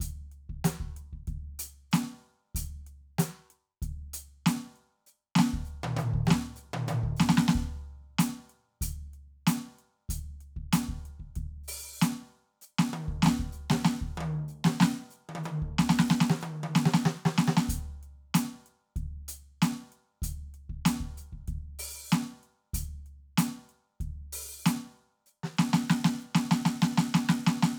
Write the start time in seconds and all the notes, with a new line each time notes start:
0.01 closed hi-hat, kick
0.32 closed hi-hat
0.50 kick
0.65 closed hi-hat, snare
0.81 kick
0.97 closed hi-hat
1.14 kick
1.28 kick, closed hi-hat
1.60 open hi-hat
1.92 closed hi-hat, snare, hi-hat pedal
2.56 closed hi-hat, kick
2.87 closed hi-hat
3.19 closed hi-hat, snare
3.51 closed hi-hat
3.83 kick, closed hi-hat
4.14 open hi-hat
4.47 open hi-hat, snare, hi-hat pedal
4.76 closed hi-hat
5.07 hi-hat pedal
5.36 snare, hi-hat pedal
5.39 snare
5.54 kick
5.66 hi-hat pedal
5.84 mid tom, high tom
5.97 hi-hat pedal, mid tom, high tom
6.14 kick
6.26 snare, hi-hat pedal
6.31 snare
6.57 hi-hat pedal
6.74 mid tom, high tom
6.89 hi-hat pedal, mid tom, high tom
7.04 kick
7.17 snare, hi-hat pedal
7.30 snare
7.38 snare
7.49 snare
7.56 kick
8.19 closed hi-hat, snare
8.50 closed hi-hat
8.82 closed hi-hat, kick
9.14 closed hi-hat
9.48 closed hi-hat, snare
9.79 closed hi-hat
10.10 closed hi-hat, kick
10.41 closed hi-hat
10.57 kick
10.73 closed hi-hat, snare
10.89 kick
11.06 closed hi-hat
11.20 kick
11.36 kick, closed hi-hat
11.64 hi-hat pedal
11.69 open hi-hat
12.02 open hi-hat, snare, hi-hat pedal
12.62 hi-hat pedal
12.79 snare
12.92 hi-hat pedal, high tom
13.09 kick
13.23 snare, hi-hat pedal
13.27 snare
13.40 kick
13.53 hi-hat pedal
13.71 snare
13.85 snare, hi-hat pedal
14.02 kick
14.16 hi-hat pedal, high tom
14.21 high tom
14.40 high tom
14.49 hi-hat pedal
14.65 snare
14.67 snare
14.81 snare
14.83 snare
15.11 hi-hat pedal
15.30 high tom
15.36 high tom
15.44 hi-hat pedal, high tom
15.63 kick
15.79 snare
15.90 snare
16.00 snare
16.07 snare, hi-hat pedal
16.21 snare
16.31 snare
16.42 hi-hat pedal, high tom
16.64 high tom
16.75 snare, hi-hat pedal
16.86 snare
16.94 snare
17.06 snare
17.26 snare
17.39 snare, hi-hat pedal
17.48 snare
17.58 snare
17.70 closed hi-hat, kick
18.04 closed hi-hat
18.35 closed hi-hat, snare
18.67 closed hi-hat
18.97 kick, closed hi-hat
19.29 open hi-hat
19.63 closed hi-hat, snare, hi-hat pedal
19.93 closed hi-hat
20.23 closed hi-hat, kick
20.55 closed hi-hat
20.70 kick
20.86 closed hi-hat, snare
21.01 kick
21.18 closed hi-hat
21.33 kick
21.48 kick, closed hi-hat
21.80 open hi-hat
22.12 snare, closed hi-hat, hi-hat pedal
22.44 closed hi-hat
22.74 closed hi-hat, kick
23.07 closed hi-hat
23.38 closed hi-hat, snare
23.70 closed hi-hat
24.01 kick, closed hi-hat
24.33 open hi-hat
24.66 open hi-hat, snare, hi-hat pedal
25.27 hi-hat pedal
25.44 snare
25.58 snare, hi-hat pedal
25.74 snare
25.89 snare, hi-hat pedal
26.05 snare
26.20 hi-hat pedal
26.36 snare
26.52 snare
26.66 snare
26.82 snare, hi-hat pedal
26.98 snare
27.13 snare, hi-hat pedal
27.30 snare
27.44 snare, hi-hat pedal
27.63 snare